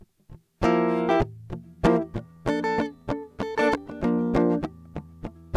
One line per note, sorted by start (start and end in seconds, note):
0.64 1.20 F3
0.64 1.21 A#3
0.64 1.09 E4
0.64 1.04 G4
1.10 1.25 E4
1.10 1.25 G4
1.54 1.66 E3
1.85 2.06 F3
1.85 2.08 A#3
1.85 2.12 E4
1.85 2.16 G4
2.47 2.91 F3
2.47 2.78 A#3
2.47 2.60 D4
2.47 2.62 A4
2.61 2.79 D4
2.65 2.81 A4
2.79 2.96 A#3
2.79 2.98 D4
2.79 2.97 A4
3.12 3.30 D4
3.12 3.33 A4
3.44 3.59 A4
3.59 3.73 A#3
3.59 3.73 D4
3.59 3.79 A4
3.91 4.04 D4
4.02 4.35 F3
4.02 4.35 A#3
4.02 4.21 D4
4.36 4.61 F3
4.36 4.61 A#3
4.36 4.62 D4